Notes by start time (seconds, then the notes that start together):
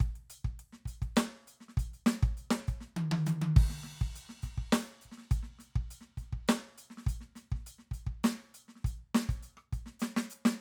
0.01 kick, closed hi-hat
0.16 closed hi-hat
0.30 closed hi-hat
0.45 kick, snare
0.60 closed hi-hat
0.73 snare
0.86 closed hi-hat, kick
1.02 kick, closed hi-hat
1.17 closed hi-hat, snare
1.33 snare
1.48 closed hi-hat
1.61 snare
1.69 snare
1.78 closed hi-hat, kick
1.94 closed hi-hat
2.07 snare
2.23 closed hi-hat, kick
2.38 closed hi-hat
2.51 snare
2.68 closed hi-hat, kick
2.81 snare
2.97 high tom
3.12 high tom
3.27 hi-hat pedal, high tom
3.42 high tom
3.57 kick, crash
3.70 snare
3.84 snare
4.01 closed hi-hat, kick
4.16 closed hi-hat
4.30 snare
4.43 closed hi-hat, kick, snare
4.57 kick, closed hi-hat
4.73 open hi-hat, snare
5.02 open hi-hat, hi-hat pedal
5.06 kick
5.12 snare
5.18 snare
5.22 snare
5.31 closed hi-hat, kick
5.43 snare
5.59 closed hi-hat, snare
5.76 kick, closed hi-hat
5.91 closed hi-hat
6.01 snare
6.18 closed hi-hat, kick, snare
6.33 kick
6.48 closed hi-hat, snare
6.57 snare
6.66 snare
6.69 snare
6.78 closed hi-hat
6.91 snare
6.98 snare
7.02 snare
7.07 closed hi-hat, kick
7.21 snare
7.36 closed hi-hat, snare
7.51 kick, snare, closed hi-hat
7.58 snare
7.67 closed hi-hat
7.79 snare
7.92 closed hi-hat, kick
8.07 kick, closed hi-hat
8.24 closed hi-hat, snare
8.38 snare
8.55 closed hi-hat
8.69 snare
8.76 snare
8.80 snare
8.85 closed hi-hat, kick
9.15 snare
9.29 closed hi-hat, kick, snare
9.43 closed hi-hat
9.58 cross-stick
9.73 closed hi-hat, kick
9.87 snare
10.00 snare, hi-hat pedal
10.17 snare
10.31 hi-hat pedal
10.46 snare